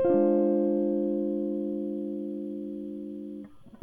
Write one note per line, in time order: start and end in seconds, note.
0.00 3.25 C5
0.05 3.42 F4
0.10 2.20 G#3
0.10 3.49 D4